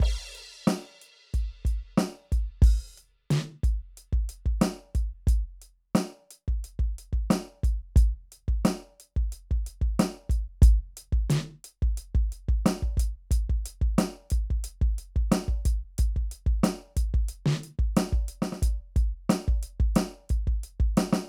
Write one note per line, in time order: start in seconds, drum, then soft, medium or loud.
0.00 kick medium
0.00 crash loud
0.35 closed hi-hat medium
0.67 closed hi-hat medium
0.67 snare loud
1.01 closed hi-hat medium
1.34 closed hi-hat medium
1.34 kick medium
1.65 closed hi-hat medium
1.65 kick medium
1.97 closed hi-hat medium
1.97 snare loud
2.32 closed hi-hat medium
2.32 kick medium
2.62 open hi-hat loud
2.62 kick loud
2.97 open hi-hat medium
2.97 hi-hat pedal medium
3.30 closed hi-hat medium
3.30 snare loud
3.63 closed hi-hat medium
3.63 kick medium
3.97 closed hi-hat medium
4.12 kick medium
4.29 closed hi-hat loud
4.46 kick medium
4.61 closed hi-hat loud
4.61 snare loud
4.95 closed hi-hat medium
4.95 kick medium
5.27 closed hi-hat loud
5.27 kick medium
5.61 closed hi-hat medium
5.95 closed hi-hat loud
5.95 snare loud
6.30 closed hi-hat medium
6.48 kick medium
6.64 closed hi-hat medium
6.79 kick medium
6.98 closed hi-hat medium
7.13 kick medium
7.30 closed hi-hat loud
7.30 snare loud
7.63 closed hi-hat medium
7.63 kick medium
7.96 closed hi-hat loud
7.96 kick loud
8.32 closed hi-hat medium
8.48 kick medium
8.65 closed hi-hat loud
8.65 snare loud
9.00 closed hi-hat medium
9.16 kick medium
9.32 closed hi-hat medium
9.51 kick medium
9.66 closed hi-hat medium
9.81 kick medium
9.99 closed hi-hat loud
9.99 snare loud
10.29 closed hi-hat medium
10.29 kick medium
10.62 closed hi-hat loud
10.62 kick loud
10.97 closed hi-hat loud
11.12 kick medium
11.30 closed hi-hat loud
11.30 snare loud
11.64 closed hi-hat loud
11.82 kick medium
11.97 closed hi-hat loud
12.14 kick medium
12.32 closed hi-hat medium
12.48 kick medium
12.66 closed hi-hat loud
12.66 snare loud
12.82 kick medium
12.97 closed hi-hat loud
12.97 kick medium
13.31 closed hi-hat loud
13.31 kick medium
13.49 kick medium
13.65 closed hi-hat loud
13.81 kick medium
13.98 closed hi-hat loud
13.98 snare loud
14.30 closed hi-hat loud
14.30 kick medium
14.50 kick medium
14.64 closed hi-hat loud
14.81 kick medium
14.98 closed hi-hat medium
15.16 kick medium
15.32 closed hi-hat loud
15.32 snare loud
15.48 kick medium
15.65 closed hi-hat loud
15.65 kick medium
15.98 closed hi-hat loud
15.98 kick medium
16.16 kick medium
16.31 closed hi-hat loud
16.46 kick medium
16.63 closed hi-hat loud
16.63 snare loud
16.96 closed hi-hat loud
16.96 kick medium
17.14 kick medium
17.28 closed hi-hat loud
17.46 snare loud
17.63 closed hi-hat medium
17.79 kick medium
17.96 closed hi-hat loud
17.96 snare loud
18.12 kick medium
18.28 closed hi-hat loud
18.42 snare medium
18.52 snare medium
18.62 closed hi-hat loud
18.62 kick medium
18.96 closed hi-hat medium
18.96 kick medium
19.29 closed hi-hat loud
19.29 snare loud
19.48 kick medium
19.63 closed hi-hat loud
19.80 kick medium
19.95 closed hi-hat loud
19.95 snare loud
20.29 closed hi-hat medium
20.29 kick medium
20.47 kick medium
20.63 closed hi-hat medium
20.80 kick medium
20.97 closed hi-hat loud
20.97 snare loud
21.13 snare loud